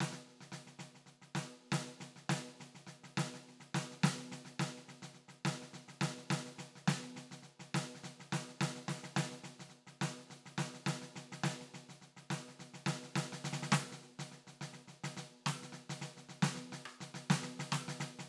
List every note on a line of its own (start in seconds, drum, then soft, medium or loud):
0.00 snare medium
0.12 snare soft
0.28 snare soft
0.40 snare soft
0.52 snare medium
0.67 snare soft
0.79 snare soft
0.95 snare soft
1.06 snare soft
1.22 snare soft
1.35 snare medium
1.72 snare loud
1.86 snare soft
2.00 snare soft
2.16 snare soft
2.29 snare loud
2.48 snare soft
2.60 snare soft
2.75 snare soft
2.87 snare soft
3.03 snare soft
3.17 snare loud
3.34 snare soft
3.48 snare soft
3.60 snare soft
3.74 snare loud
3.91 snare soft
4.03 snare loud
4.18 snare soft
4.32 snare medium
4.45 snare soft
4.59 snare loud
4.77 snare soft
4.88 snare soft
5.02 snare soft
5.14 snare soft
5.28 snare soft
5.45 snare loud
5.62 snare soft
5.73 snare soft
5.88 snare soft
6.01 snare loud
6.18 snare soft
6.30 snare loud
6.46 snare soft
6.58 snare medium
6.75 snare soft
6.88 snare loud
7.02 snare soft
7.16 snare soft
7.31 snare soft
7.43 snare soft
7.59 snare soft
7.74 snare loud
7.95 snare soft
8.03 snare medium
8.20 snare soft
8.32 snare medium
8.48 snare soft
8.61 snare loud
8.75 snare soft
8.88 snare medium
9.03 snare soft
9.16 snare loud
9.31 snare soft
9.43 snare soft
9.59 snare soft
9.69 snare soft
9.87 snare soft
10.01 snare loud
10.18 snare soft
10.30 snare soft
10.46 snare soft
10.58 snare medium
10.74 snare soft
10.86 snare loud
11.02 snare soft
11.16 snare medium
11.32 snare medium
11.43 snare loud
11.60 snare soft
11.74 snare soft
11.89 snare soft
12.01 snare soft
12.16 snare soft
12.30 snare medium
12.48 snare soft
12.59 snare soft
12.74 snare soft
12.86 snare loud
13.03 snare soft
13.15 snare loud
13.32 snare medium
13.44 snare medium
13.53 snare medium
13.63 snare medium
13.72 snare loud
13.92 snare soft
14.03 snare soft
14.19 snare medium
14.31 snare soft
14.47 snare soft
14.61 snare medium
14.73 snare soft
14.88 snare soft
15.04 snare medium
15.17 snare medium
15.46 snare medium
15.63 snare soft
15.72 snare soft
15.89 snare medium
16.01 snare medium
16.17 snare soft
16.29 snare soft
16.42 snare loud
16.56 snare soft
16.72 snare medium
16.85 cross-stick medium
17.00 snare medium
17.14 snare medium
17.30 snare loud
17.43 snare medium
17.59 snare medium
17.72 snare medium
17.88 snare medium
18.00 snare medium
18.19 snare medium